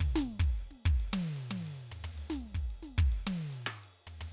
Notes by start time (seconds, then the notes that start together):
0.01 kick, hi-hat pedal, ride
0.16 snare
0.40 kick
0.44 ride
0.57 hi-hat pedal, ride
0.71 snare
0.86 kick
1.01 ride
1.11 hi-hat pedal, high tom
1.37 ride
1.51 high tom
1.66 hi-hat pedal, ride
1.92 floor tom
2.05 floor tom
2.18 hi-hat pedal, ride
2.31 snare
2.55 kick, ride
2.71 hi-hat pedal, ride
2.83 snare
2.99 kick
3.13 ride
3.27 hi-hat pedal, high tom
3.53 ride
3.67 cross-stick
3.82 hi-hat pedal, ride
4.07 floor tom
4.21 floor tom